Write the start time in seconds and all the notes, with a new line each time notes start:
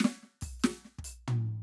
0.01 snare
0.05 snare
0.23 snare
0.42 kick, percussion
0.60 percussion
0.64 snare
0.85 snare
0.99 kick
1.05 percussion
1.28 floor tom